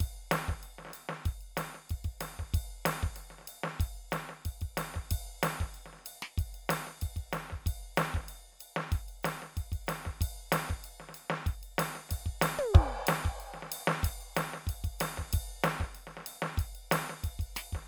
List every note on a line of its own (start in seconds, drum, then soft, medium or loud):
0.01 kick medium
0.01 ride medium
0.32 snare loud
0.32 hi-hat pedal medium
0.32 ride loud
0.49 kick medium
0.49 snare soft
0.61 snare soft
0.61 ride soft
0.79 snare soft
0.86 snare soft
0.88 snare soft
0.89 snare soft
0.91 snare soft
0.91 hi-hat pedal loud
0.91 ride medium
1.10 snare medium
1.26 kick medium
1.26 ride medium
1.41 ride soft
1.57 snare medium
1.57 hi-hat pedal medium
1.57 ride medium
1.75 snare soft
1.90 kick soft
1.90 ride medium
2.05 kick soft
2.05 ride soft
2.21 snare medium
2.21 hi-hat pedal medium
2.21 ride medium
2.40 kick soft
2.40 snare soft
2.55 kick medium
2.55 ride medium
2.86 snare loud
2.86 hi-hat pedal medium
2.86 ride loud
3.03 kick medium
3.03 snare soft
3.16 snare soft
3.16 hi-hat pedal soft
3.16 ride medium
3.31 snare soft
3.39 snare soft
3.42 snare soft
3.48 hi-hat pedal medium
3.48 ride medium
3.64 snare medium
3.80 kick medium
3.80 ride medium
3.96 ride soft
4.12 snare medium
4.12 hi-hat pedal medium
4.12 ride medium
4.30 snare soft
4.46 kick soft
4.46 ride medium
4.62 kick soft
4.62 ride soft
4.78 snare medium
4.78 hi-hat pedal medium
4.78 ride medium
4.95 kick soft
4.95 snare soft
5.11 kick medium
5.11 ride loud
5.43 snare loud
5.43 hi-hat pedal medium
5.43 ride loud
5.61 kick medium
5.61 snare soft
5.75 ride soft
5.86 snare soft
5.94 snare soft
6.00 snare soft
6.03 snare soft
6.06 snare soft
6.06 hi-hat pedal medium
6.06 ride medium
6.23 snare medium
6.38 kick medium
6.38 ride medium
6.55 ride soft
6.70 snare loud
6.70 hi-hat pedal medium
6.70 ride loud
6.88 snare soft
7.02 kick soft
7.02 ride medium
7.17 kick soft
7.17 ride soft
7.33 snare medium
7.33 hi-hat pedal medium
7.33 ride medium
7.51 kick soft
7.51 snare soft
7.67 kick medium
7.67 ride medium
7.97 snare loud
7.97 hi-hat pedal medium
7.97 ride medium
8.15 kick medium
8.15 snare soft
8.24 snare soft
8.29 ride medium
8.48 snare soft
8.51 snare soft
8.53 snare soft
8.60 hi-hat pedal medium
8.60 ride medium
8.77 snare medium
8.93 kick medium
8.93 ride medium
9.09 ride soft
9.23 snare loud
9.23 hi-hat pedal medium
9.23 ride medium
9.43 snare soft
9.58 kick soft
9.58 ride medium
9.73 kick soft
9.73 ride soft
9.87 snare medium
9.87 hi-hat pedal medium
9.87 ride medium
10.06 kick soft
10.06 snare soft
10.22 kick medium
10.22 ride loud
10.53 snare loud
10.53 hi-hat pedal medium
10.53 ride loud
10.70 kick medium
10.70 snare soft
10.85 ride medium
11.01 snare soft
11.09 snare soft
11.15 hi-hat pedal medium
11.15 ride medium
11.31 snare loud
11.47 kick medium
11.47 ride medium
11.64 ride soft
11.79 snare loud
11.79 hi-hat pedal medium
11.79 ride loud
11.96 snare soft
12.10 kick soft
12.10 snare soft
12.10 ride medium
12.27 kick medium
12.42 snare loud
12.42 hi-hat pedal medium
12.42 ride loud
12.59 high tom loud
12.74 kick loud
12.74 crash loud
13.08 snare loud
13.08 hi-hat pedal medium
13.08 ride loud
13.26 kick medium
13.41 ride soft
13.55 snare soft
13.63 snare soft
13.72 hi-hat pedal medium
13.72 ride loud
13.88 snare loud
14.04 kick medium
14.04 ride loud
14.22 ride soft
14.36 snare loud
14.36 hi-hat pedal medium
14.36 ride medium
14.54 snare soft
14.68 kick medium
14.68 ride medium
14.85 kick medium
14.85 ride medium
15.00 snare medium
15.00 hi-hat pedal medium
15.00 ride loud
15.18 kick soft
15.18 snare soft
15.34 kick medium
15.34 ride loud
15.64 snare loud
15.64 hi-hat pedal medium
15.64 ride medium
15.81 kick medium
15.81 snare soft
15.85 snare soft
15.95 ride soft
16.08 snare soft
16.18 snare soft
16.21 snare soft
16.27 hi-hat pedal medium
16.27 ride medium
16.43 snare medium
16.58 kick medium
16.58 ride medium
16.76 ride soft
16.91 snare loud
16.91 hi-hat pedal medium
16.91 ride loud
17.10 snare soft
17.24 kick soft
17.24 ride medium
17.40 kick soft
17.40 ride soft
17.56 snare medium
17.56 hi-hat pedal medium
17.56 ride loud
17.73 kick soft
17.73 snare soft